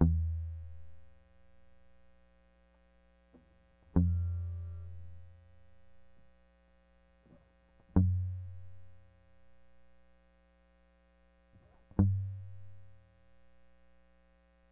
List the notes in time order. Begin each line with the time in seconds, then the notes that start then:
0.04 E2